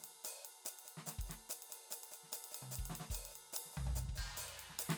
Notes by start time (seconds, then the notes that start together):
0.01 hi-hat pedal, ride
0.24 hi-hat pedal, ride
0.45 ride
0.66 hi-hat pedal, ride
0.79 ride
0.85 hi-hat pedal, ride
0.97 snare
1.07 snare, hi-hat pedal, ride
1.19 kick, ride
1.27 snare, hi-hat pedal
1.32 ride
1.50 hi-hat pedal, ride
1.63 ride
1.70 hi-hat pedal, ride
1.91 hi-hat pedal, ride
2.04 ride
2.12 hi-hat pedal, ride
2.24 snare
2.32 hi-hat pedal, ride
2.45 ride
2.52 hi-hat pedal, ride
2.62 high tom
2.72 hi-hat pedal
2.76 kick, ride
2.86 hi-hat pedal, ride
2.90 snare
2.96 ride
3.00 snare
3.10 kick, hi-hat pedal
3.15 ride
3.26 ride
3.31 hi-hat pedal
3.36 ride
3.53 hi-hat pedal, ride
3.66 snare
3.73 floor tom, hi-hat pedal
3.87 floor tom
3.96 hi-hat pedal, high tom
4.09 kick
4.16 kick, hi-hat pedal, ride
4.37 hi-hat pedal, ride
4.49 ride
4.57 hi-hat pedal, ride
4.70 snare
4.79 hi-hat pedal, ride
4.88 kick, snare, ride